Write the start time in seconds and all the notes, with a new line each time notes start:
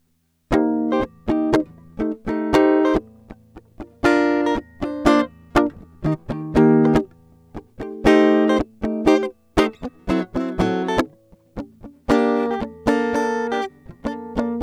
0.53 A#3 D#4 G4 C5
0.93 G4 C5
1.29 A#3 D#4 G4
1.54 D#4 G4 C5
1.98 A3 D#4
2.03 G4
2.28 A3 D#4 G4
2.54 A3 D#4 G4 C5
2.73 G4
2.86 G4 C5
4.05 D4 F4 A#4
4.47 A#4
4.83 D4 E4 C5
5.06 A#3 D4 F4 C5
5.56 A#3 D4 F4
6.05 D#3 A3 D#4 G4
6.30 D#3 A#3 G4
6.56 D#3 A#3 D#4 G4
6.85 G4
6.97 D#4 G4
7.81 A3 D#4 G4
8.07 A3 D#4 G4 C5
8.51 G4 C5
8.83 A3 D#4 G4
9.06 A3 D#4 G4 C5
9.24 C5
9.58 A3 D#4 G4 C5
10.10 F#3 C4 E4 A4
10.36 F#3 C4 E4 A4
10.60 F#3 C4 E4 A4
10.89 E4 A4
10.99 C4
12.10 A#3 D4 G4
12.52 G4
12.61 A3 A4
12.88 A#3 D4 A4
13.15 D4 A4
13.53 D4 G4
14.06 A#3 D4 A4
14.39 A#3 D4 A4